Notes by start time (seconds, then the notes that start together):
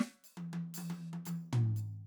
0.00 snare
0.24 percussion
0.37 high tom
0.53 high tom
0.74 high tom, percussion
0.90 high tom
1.13 high tom
1.25 high tom, percussion
1.53 floor tom
1.76 percussion